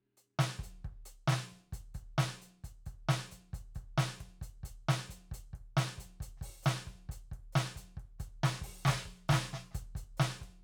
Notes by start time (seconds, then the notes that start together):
0.17 closed hi-hat
0.39 snare
0.59 kick
0.63 closed hi-hat
0.84 kick, closed hi-hat
1.05 closed hi-hat
1.27 snare
1.31 snare
1.52 kick
1.72 closed hi-hat, kick
1.94 closed hi-hat, kick
2.18 snare
2.42 closed hi-hat
2.64 closed hi-hat, kick
2.86 closed hi-hat, kick
3.09 snare
3.31 closed hi-hat, kick
3.53 closed hi-hat, kick
3.75 closed hi-hat, kick
3.98 snare
4.20 kick, closed hi-hat
4.41 closed hi-hat, kick
4.63 closed hi-hat, kick
4.89 snare
5.09 closed hi-hat, kick
5.31 closed hi-hat, kick
5.53 kick, closed hi-hat
5.77 snare
5.98 closed hi-hat, kick
6.20 closed hi-hat, kick, snare
6.37 snare
6.41 open hi-hat, kick
6.63 snare, hi-hat pedal
6.87 kick, closed hi-hat
7.09 closed hi-hat, kick, snare
7.31 kick, closed hi-hat
7.52 snare, hi-hat pedal
7.76 closed hi-hat, kick
7.97 kick, closed hi-hat
8.19 closed hi-hat, kick, snare
8.43 snare
8.61 open hi-hat, kick
8.85 kick, snare, hi-hat pedal
8.88 snare
9.05 kick
9.29 kick, snare, hi-hat pedal
9.33 snare
9.53 snare
9.71 closed hi-hat, kick, snare
9.95 closed hi-hat, kick
10.17 snare, hi-hat pedal
10.41 kick, closed hi-hat